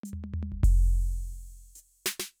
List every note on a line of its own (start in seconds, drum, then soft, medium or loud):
0.03 hi-hat pedal medium
0.03 mid tom medium
0.13 floor tom medium
0.24 mid tom medium
0.34 floor tom loud
0.43 mid tom loud
0.52 kick soft
0.63 kick loud
0.63 crash loud
1.33 kick soft
1.75 hi-hat pedal loud
2.06 snare loud
2.19 snare loud